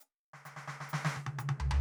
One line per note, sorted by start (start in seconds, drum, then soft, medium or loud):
0.00 hi-hat pedal medium
0.33 snare soft
0.45 snare soft
0.45 hi-hat pedal medium
0.56 snare soft
0.68 snare medium
0.80 snare soft
0.89 hi-hat pedal medium
0.93 snare medium
1.05 snare medium
1.16 closed hi-hat soft
1.16 high tom medium
1.26 high tom medium
1.39 hi-hat pedal loud
1.39 high tom medium
1.49 high tom loud
1.60 floor tom loud
1.71 floor tom loud